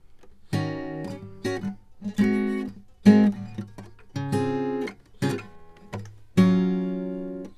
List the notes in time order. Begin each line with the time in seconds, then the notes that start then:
0.54 D#3 C#4 F#4 A#4
1.45 C#4 F#4 A#4
2.19 G#3 C4 F#4
2.25 A#4
3.06 G#3 C4 F#4 A#4
4.17 C#3
4.33 C4 F4 G#4
5.23 C#3 C4 F4 G#4
6.38 F#3 C#4 F4 A#4